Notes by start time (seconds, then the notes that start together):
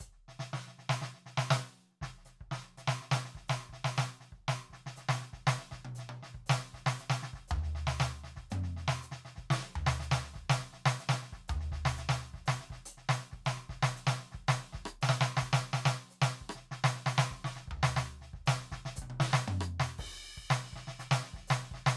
0.00 closed hi-hat, kick
0.12 snare
0.28 snare
0.39 snare
0.53 snare
0.67 snare
0.78 snare
0.89 snare
0.98 snare
1.02 snare
1.14 snare
1.26 snare
1.37 snare
1.44 snare
1.50 snare
1.56 cross-stick
1.90 snare
2.01 kick, snare
2.18 snare
2.25 snare, hi-hat pedal
2.39 kick, snare
2.51 snare
2.63 snare
2.77 snare, hi-hat pedal
2.87 snare
3.01 snare
3.11 snare
3.16 cross-stick
3.25 snare
3.35 kick, snare
3.48 snare, hi-hat pedal
3.60 snare
3.69 kick, snare
3.84 snare
3.96 snare, hi-hat pedal
4.20 snare
4.32 kick, snare
4.48 snare, hi-hat pedal
4.59 snare
4.65 snare
4.70 kick, snare
4.86 snare
4.96 snare, hi-hat pedal
5.09 snare
5.14 snare
5.21 snare
5.33 kick, snare
5.47 snare, hi-hat pedal
5.58 snare
5.71 kick, snare
5.85 high tom
5.95 snare, hi-hat pedal
6.09 high tom
6.23 snare
6.34 kick
6.46 snare, hi-hat pedal
6.59 snare
6.74 kick, snare
6.86 snare
6.98 snare, hi-hat pedal
7.10 snare
7.23 snare
7.33 kick, snare
7.48 hi-hat pedal, floor tom
7.63 snare
7.75 snare
7.87 snare
7.99 snare, hi-hat pedal
8.15 snare
8.24 snare
8.36 kick, snare
8.50 hi-hat pedal, mid tom
8.63 snare
8.77 snare
8.88 snare
8.99 snare, hi-hat pedal
9.11 snare
9.24 snare, hi-hat pedal
9.36 kick, snare
9.50 snare, hi-hat pedal
9.62 snare
9.75 floor tom
9.86 snare
10.00 snare, hi-hat pedal
10.11 snare
10.16 snare
10.24 snare
10.35 kick
10.50 snare, hi-hat pedal
10.59 snare
10.73 snare
10.86 snare
10.99 snare, hi-hat pedal
11.09 snare
11.13 cross-stick
11.22 snare
11.32 kick, snare
11.48 hi-hat pedal, floor tom
11.60 snare
11.72 kick, snare
11.78 kick
11.85 snare
11.97 snare, hi-hat pedal
12.09 snare
12.16 snare
12.21 snare
12.34 kick, snare
12.46 snare, hi-hat pedal
12.60 snare
12.70 kick, snare
12.85 closed hi-hat
12.97 snare
13.09 snare
13.19 snare
13.31 kick, snare
13.45 snare, hi-hat pedal
13.56 snare
13.69 kick, snare
13.82 snare
13.95 snare, hi-hat pedal
14.07 snare
14.11 cross-stick
14.18 snare
14.31 kick, snare
14.42 kick
14.48 snare, hi-hat pedal
14.60 snare
14.72 kick, snare
14.85 cross-stick
15.01 snare, hi-hat pedal
15.09 snare
15.21 snare
15.37 snare
15.41 kick
15.53 snare, hi-hat pedal
15.73 snare
15.85 snare
16.10 hi-hat pedal
16.22 snare
16.41 kick
16.49 cross-stick
16.55 snare
16.61 hi-hat pedal
16.71 snare
16.84 snare
16.96 snare
17.06 snare
17.17 snare, hi-hat pedal
17.31 kick, snare
17.44 snare, hi-hat pedal
17.56 snare
17.68 kick, floor tom
17.83 snare
17.96 snare, hi-hat pedal
18.21 snare
18.33 kick, snare
18.46 snare, hi-hat pedal
18.61 snare
18.72 kick, snare
18.77 kick
18.80 kick
18.85 snare
18.96 kick, hi-hat pedal
19.02 kick, high tom
19.08 kick, high tom
19.20 snare
19.33 snare
19.48 mid tom
19.61 cross-stick
19.80 snare
19.98 kick, hi-hat pedal, crash
20.05 kick
20.08 kick
20.37 kick
20.50 snare, hi-hat pedal
20.64 snare
20.73 kick, snare
20.87 snare
20.99 snare, hi-hat pedal
21.11 snare
21.23 snare
21.33 kick, snare
21.41 kick
21.47 snare, hi-hat pedal
21.63 snare
21.71 kick, snare
21.86 snare